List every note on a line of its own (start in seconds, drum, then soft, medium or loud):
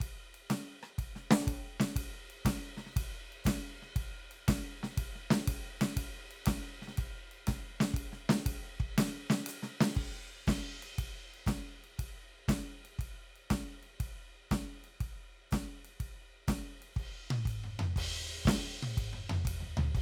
0.01 kick soft
0.01 ride medium
0.35 ride medium
0.50 snare medium
0.50 hi-hat pedal medium
0.50 ride loud
0.84 cross-stick medium
0.99 kick medium
0.99 ride medium
1.16 snare soft
1.31 snare loud
1.48 kick medium
1.48 ride loud
1.80 snare loud
1.80 ride medium
1.96 kick medium
1.96 ride loud
2.31 ride medium
2.45 kick medium
2.45 snare loud
2.45 hi-hat pedal soft
2.45 ride loud
2.78 snare soft
2.87 snare soft
2.92 hi-hat pedal soft
2.97 kick medium
2.97 snare soft
2.97 ride loud
3.33 ride soft
3.45 kick medium
3.45 snare loud
3.45 hi-hat pedal medium
3.45 ride loud
3.82 snare soft
3.97 kick medium
3.97 ride medium
4.32 ride medium
4.49 kick medium
4.49 snare loud
4.49 hi-hat pedal medium
4.49 ride loud
4.84 snare medium
4.95 kick medium
4.95 hi-hat pedal soft
4.95 ride loud
5.16 snare soft
5.31 snare loud
5.48 kick medium
5.48 hi-hat pedal soft
5.48 ride loud
5.82 snare loud
5.82 ride loud
5.97 kick medium
5.97 ride loud
6.32 ride medium
6.47 kick medium
6.47 snare medium
6.47 hi-hat pedal medium
6.47 ride loud
6.82 snare soft
6.88 snare soft
6.96 kick medium
6.96 snare soft
6.96 ride medium
7.32 ride soft
7.48 kick medium
7.48 snare medium
7.48 hi-hat pedal medium
7.48 ride loud
7.81 snare loud
7.94 kick medium
7.94 ride loud
8.13 snare soft
8.30 snare loud
8.47 kick medium
8.47 ride loud
8.81 kick medium
8.98 snare loud
8.98 ride loud
9.31 snare loud
9.47 hi-hat pedal loud
9.47 ride loud
9.63 snare medium
9.81 snare loud
9.96 kick medium
9.96 crash medium
10.47 kick medium
10.47 snare loud
10.47 hi-hat pedal soft
10.47 ride medium
10.83 ride medium
10.99 kick medium
10.99 ride medium
11.35 ride soft
11.47 kick medium
11.47 snare medium
11.47 hi-hat pedal medium
11.47 ride medium
11.85 ride soft
12.00 kick soft
12.00 ride medium
12.49 kick medium
12.49 snare loud
12.49 hi-hat pedal medium
12.49 ride loud
12.86 ride soft
12.99 kick soft
12.99 ride medium
13.36 ride soft
13.50 kick medium
13.50 snare medium
13.50 hi-hat pedal soft
13.50 ride medium
13.84 ride soft
14.01 kick medium
14.01 ride medium
14.52 kick medium
14.52 snare medium
14.52 hi-hat pedal soft
14.52 ride medium
14.85 ride soft
15.01 kick medium
15.01 ride medium
15.51 kick medium
15.51 snare medium
15.51 hi-hat pedal medium
15.51 ride medium
15.85 ride medium
16.01 kick soft
16.01 ride medium
16.48 kick medium
16.48 snare medium
16.48 hi-hat pedal medium
16.48 ride loud
16.83 ride soft
16.94 kick medium
16.94 hi-hat pedal soft
16.99 ride medium
17.31 high tom loud
17.46 kick medium
17.46 hi-hat pedal soft
17.46 ride medium
17.64 mid tom medium
17.80 mid tom loud
17.97 kick medium
17.97 ride loud
18.46 kick medium
18.46 snare loud
18.46 hi-hat pedal medium
18.46 ride medium
18.83 high tom loud
18.98 kick medium
18.98 ride medium
19.14 mid tom medium
19.30 mid tom loud
19.46 kick medium
19.46 hi-hat pedal soft
19.46 ride loud
19.61 floor tom medium
19.78 floor tom loud
19.95 kick medium
19.95 ride medium